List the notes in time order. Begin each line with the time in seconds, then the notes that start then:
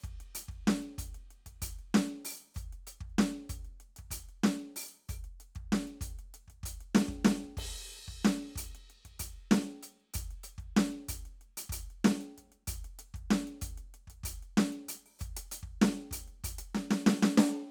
0.01 kick, hi-hat pedal
0.05 closed hi-hat
0.21 closed hi-hat
0.35 closed hi-hat
0.49 kick, closed hi-hat
0.68 snare
0.82 closed hi-hat
0.99 closed hi-hat, kick
1.15 closed hi-hat
1.31 closed hi-hat
1.46 kick, closed hi-hat
1.62 closed hi-hat, kick
1.79 closed hi-hat
1.95 snare
2.09 closed hi-hat
2.25 open hi-hat
2.42 open hi-hat
2.55 closed hi-hat, kick, hi-hat pedal
2.73 closed hi-hat
2.87 closed hi-hat
3.01 kick
3.10 closed hi-hat
3.19 snare
3.33 closed hi-hat
3.50 closed hi-hat, kick
3.65 closed hi-hat
3.80 closed hi-hat
3.97 kick, closed hi-hat
4.11 closed hi-hat, kick
4.29 closed hi-hat
4.44 snare
4.60 closed hi-hat
4.76 open hi-hat
4.95 open hi-hat
5.09 open hi-hat, kick, hi-hat pedal
5.24 closed hi-hat
5.40 closed hi-hat
5.55 kick, closed hi-hat
5.73 snare
5.88 closed hi-hat
6.01 closed hi-hat, kick
6.19 closed hi-hat
6.34 closed hi-hat
6.48 kick, closed hi-hat
6.64 closed hi-hat, kick
6.81 closed hi-hat
6.95 snare
7.09 kick, closed hi-hat
7.25 snare
7.44 kick
7.57 kick, hi-hat pedal, crash
7.70 closed hi-hat
7.94 closed hi-hat
8.08 kick, closed hi-hat
8.25 snare
8.42 closed hi-hat
8.56 closed hi-hat, kick
8.63 kick
8.75 closed hi-hat
8.90 closed hi-hat
9.05 kick, closed hi-hat
9.20 closed hi-hat, kick
9.42 closed hi-hat
9.51 snare
9.67 closed hi-hat
9.83 closed hi-hat
10.00 closed hi-hat
10.14 closed hi-hat, kick
10.31 closed hi-hat
10.44 closed hi-hat
10.58 kick, closed hi-hat
10.77 snare
10.91 closed hi-hat
11.09 closed hi-hat, kick
11.26 closed hi-hat
11.41 closed hi-hat
11.58 closed hi-hat
11.70 closed hi-hat, kick
11.91 closed hi-hat
12.05 snare
12.21 closed hi-hat
12.38 kick, closed hi-hat
12.52 closed hi-hat
12.68 closed hi-hat, kick
12.85 closed hi-hat
12.99 closed hi-hat
13.14 kick, closed hi-hat
13.31 snare
13.48 closed hi-hat
13.62 closed hi-hat, kick
13.78 closed hi-hat
13.94 closed hi-hat
14.08 kick, closed hi-hat
14.24 closed hi-hat, kick
14.43 closed hi-hat
14.58 snare
14.73 closed hi-hat
14.86 closed hi-hat, kick
15.06 open hi-hat
15.19 closed hi-hat, kick, hi-hat pedal
15.37 closed hi-hat
15.52 closed hi-hat
15.63 kick
15.82 snare
15.98 closed hi-hat
16.11 closed hi-hat, kick
16.28 closed hi-hat
16.44 closed hi-hat, kick
16.59 closed hi-hat
16.75 snare
16.91 snare
17.07 snare
17.23 snare
17.38 snare